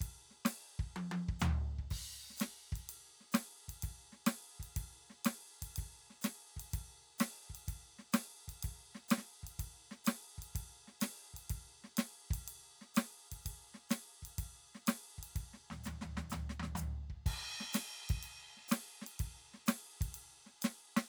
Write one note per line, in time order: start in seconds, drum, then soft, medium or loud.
0.01 kick soft
0.01 ride medium
0.31 snare soft
0.46 snare medium
0.46 hi-hat pedal medium
0.46 ride loud
0.80 kick soft
0.97 high tom medium
1.12 closed hi-hat soft
1.12 high tom medium
1.29 kick soft
1.40 floor tom loud
1.40 hi-hat pedal medium
1.79 kick soft
1.91 kick soft
1.91 crash medium
2.31 snare soft
2.38 hi-hat pedal medium
2.38 ride loud
2.42 snare medium
2.73 kick soft
2.73 ride medium
2.90 ride medium
3.21 snare soft
3.33 snare medium
3.33 hi-hat pedal medium
3.33 ride loud
3.69 kick soft
3.69 ride medium
3.83 kick soft
3.83 ride medium
4.13 snare soft
4.27 snare medium
4.27 hi-hat pedal medium
4.27 ride loud
4.60 kick soft
4.60 ride medium
4.77 kick soft
4.77 ride medium
5.11 snare soft
5.25 snare medium
5.25 hi-hat pedal loud
5.25 ride loud
5.63 kick soft
5.63 ride medium
5.72 hi-hat pedal soft
5.77 kick soft
5.77 ride medium
6.11 snare soft
6.22 snare medium
6.22 hi-hat pedal loud
6.22 ride loud
6.57 kick soft
6.57 ride medium
6.71 kick soft
6.71 hi-hat pedal soft
6.71 ride medium
7.19 snare medium
7.19 hi-hat pedal medium
7.19 ride loud
7.50 kick soft
7.56 ride medium
7.66 kick soft
7.66 hi-hat pedal soft
7.66 ride medium
8.00 snare soft
8.13 snare medium
8.13 hi-hat pedal loud
8.13 ride loud
8.49 kick soft
8.49 ride medium
8.63 kick soft
8.63 ride loud
8.96 snare soft
9.09 snare medium
9.09 hi-hat pedal medium
9.09 ride loud
9.18 snare soft
9.44 kick soft
9.44 ride medium
9.60 kick soft
9.60 ride medium
9.92 snare soft
10.05 snare medium
10.05 hi-hat pedal medium
10.05 ride loud
10.39 kick soft
10.43 ride medium
10.56 kick soft
10.56 ride medium
10.88 snare soft
11.01 snare medium
11.01 hi-hat pedal loud
11.01 ride loud
11.35 kick soft
11.35 ride medium
11.51 kick soft
11.51 ride medium
11.85 snare soft
11.98 snare medium
11.98 hi-hat pedal loud
11.98 ride loud
12.31 kick medium
12.31 ride medium
12.46 hi-hat pedal soft
12.46 ride medium
12.82 snare soft
12.95 snare medium
12.95 hi-hat pedal medium
12.95 ride loud
13.33 kick soft
13.33 ride medium
13.42 hi-hat pedal soft
13.46 kick soft
13.46 ride loud
13.75 snare soft
13.90 snare medium
13.90 hi-hat pedal medium
13.90 ride loud
14.23 kick soft
14.23 ride medium
14.39 kick soft
14.39 ride medium
14.76 snare soft
14.87 snare medium
14.87 hi-hat pedal loud
14.87 ride loud
15.19 kick soft
15.24 ride medium
15.36 kick soft
15.36 ride medium
15.54 snare soft
15.71 snare soft
15.71 floor tom soft
15.85 snare soft
15.85 floor tom medium
15.85 hi-hat pedal medium
16.02 snare soft
16.02 floor tom medium
16.18 snare soft
16.18 floor tom medium
16.31 snare medium
16.31 floor tom medium
16.31 hi-hat pedal loud
16.50 snare soft
16.60 snare soft
16.60 floor tom medium
16.76 floor tom medium
16.76 hi-hat pedal loud
17.11 kick soft
17.27 kick medium
17.27 ride loud
17.61 snare soft
17.74 snare medium
17.74 hi-hat pedal loud
17.74 ride loud
18.10 kick medium
18.10 ride medium
18.24 ride medium
18.57 snare soft
18.69 snare medium
18.69 hi-hat pedal loud
18.69 ride loud
19.02 snare soft
19.07 ride medium
19.20 kick soft
19.20 ride medium
19.55 snare soft
19.67 snare medium
19.67 hi-hat pedal loud
19.67 ride loud
20.02 kick medium
20.02 ride medium
20.13 hi-hat pedal soft
20.13 ride medium
20.47 snare soft
20.62 snare medium
20.62 hi-hat pedal loud
20.62 ride loud
20.97 snare medium
20.97 ride medium